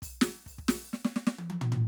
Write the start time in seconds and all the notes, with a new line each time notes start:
0.03 kick, percussion
0.22 snare, percussion
0.47 kick, percussion
0.59 kick
0.69 snare, percussion
0.94 snare
1.05 snare
1.16 snare
1.27 snare
1.39 high tom
1.50 high tom
1.62 floor tom
1.72 floor tom